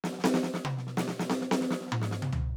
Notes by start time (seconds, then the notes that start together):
0.04 snare
0.12 snare
0.19 snare
0.24 snare
0.34 snare
0.43 snare
0.54 snare
0.65 high tom
0.77 snare
0.86 snare
0.97 snare
1.08 snare
1.19 snare
1.30 snare
1.41 snare
1.51 snare
1.61 snare
1.70 snare
1.86 snare
1.92 mid tom
2.01 snare
2.11 snare
2.22 high tom
2.32 floor tom